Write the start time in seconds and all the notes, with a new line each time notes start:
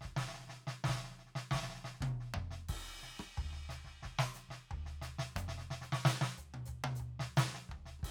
0.01 kick, snare
0.10 kick
0.17 snare
0.21 snare
0.26 snare
0.28 snare
0.34 snare
0.40 snare
0.47 snare
0.49 snare
0.54 snare
0.61 snare
0.67 snare
0.84 kick, snare
0.89 snare
0.94 snare
0.97 snare
1.01 snare
1.04 snare
1.11 snare
1.19 snare
1.27 snare
1.33 snare
1.35 snare
1.51 kick, snare
1.55 snare
1.61 snare
1.63 snare
1.69 snare
1.75 snare
1.81 snare
1.84 snare
1.94 snare
2.00 kick, snare, high tom
2.05 hi-hat pedal
2.20 snare
2.25 snare
2.34 kick, mid tom
2.45 kick
2.51 snare
2.69 kick, crash
3.01 snare, hi-hat pedal
3.19 kick, cross-stick
3.37 kick, floor tom
3.52 snare
3.69 snare, hi-hat pedal
3.85 kick, snare
4.03 kick, snare
4.19 snare
4.34 snare, hi-hat pedal
4.49 kick, snare
4.71 kick, floor tom
4.86 snare
5.02 snare, hi-hat pedal
5.19 snare
5.36 kick, hi-hat pedal, mid tom
5.45 kick, snare
5.58 snare
5.71 snare
5.81 snare, hi-hat pedal
5.92 snare
6.05 snare
6.10 hi-hat pedal
6.21 snare
6.37 floor tom, hi-hat pedal
6.54 high tom
6.66 floor tom, hi-hat pedal
6.84 high tom
6.96 hi-hat pedal
7.00 floor tom
7.20 snare
7.37 snare, hi-hat pedal
7.54 snare
7.69 kick, floor tom
7.86 snare
7.99 kick, cross-stick
8.05 crash